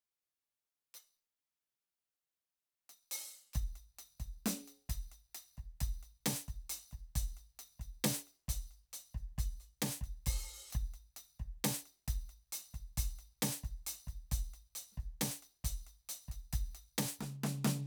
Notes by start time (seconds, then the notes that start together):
0.94 hi-hat pedal
2.89 closed hi-hat
3.11 percussion
3.53 kick, closed hi-hat, hi-hat pedal
3.75 closed hi-hat
3.99 closed hi-hat
4.20 kick, closed hi-hat
4.46 closed hi-hat, snare
4.68 closed hi-hat
4.89 kick, closed hi-hat
5.12 closed hi-hat
5.35 closed hi-hat
5.57 kick, closed hi-hat
5.80 kick, closed hi-hat
6.03 closed hi-hat
6.26 closed hi-hat, snare
6.48 kick, closed hi-hat
6.69 closed hi-hat
6.91 kick, closed hi-hat
7.15 closed hi-hat, kick
7.37 closed hi-hat
7.59 closed hi-hat
7.79 kick, closed hi-hat
8.04 closed hi-hat, snare
8.27 closed hi-hat
8.48 closed hi-hat, kick
8.71 closed hi-hat
8.93 closed hi-hat
9.14 kick, closed hi-hat
9.38 closed hi-hat, kick
9.60 closed hi-hat
9.82 snare, closed hi-hat
10.01 kick, closed hi-hat
10.26 kick, percussion
10.70 closed hi-hat, hi-hat pedal
10.75 kick
10.94 closed hi-hat
11.16 closed hi-hat
11.39 kick, closed hi-hat
11.64 closed hi-hat, snare
11.85 closed hi-hat
12.08 kick, closed hi-hat
12.29 closed hi-hat
12.52 closed hi-hat
12.74 kick, closed hi-hat
12.97 closed hi-hat, kick
13.19 closed hi-hat
13.42 closed hi-hat, snare
13.63 kick, closed hi-hat
13.86 closed hi-hat
14.07 kick, closed hi-hat
14.31 closed hi-hat, kick
14.54 closed hi-hat
14.75 closed hi-hat
14.92 snare
14.97 kick, closed hi-hat
15.21 closed hi-hat, snare
15.42 closed hi-hat
15.64 closed hi-hat, kick
15.87 closed hi-hat
16.09 closed hi-hat
16.28 kick, closed hi-hat
16.53 kick, closed hi-hat
16.69 snare
16.75 closed hi-hat
16.98 snare, closed hi-hat
17.19 kick, snare, high tom
17.43 snare, high tom
17.64 snare, high tom